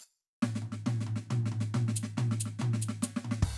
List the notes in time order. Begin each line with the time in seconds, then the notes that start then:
0.04 percussion
0.42 snare, floor tom
0.55 snare
0.62 floor tom
0.72 snare
0.86 snare, floor tom
1.01 snare
1.07 floor tom
1.16 snare
1.30 snare, floor tom
1.46 snare
1.52 floor tom
1.60 snare
1.74 snare, floor tom
1.88 snare
1.96 floor tom
2.03 snare
2.17 snare, floor tom
2.31 snare
2.40 floor tom
2.45 snare
2.59 snare, floor tom
2.73 snare
2.77 snare
2.82 floor tom
2.88 snare
3.02 snare, floor tom
3.16 snare
3.24 floor tom
3.31 snare
3.42 kick, crash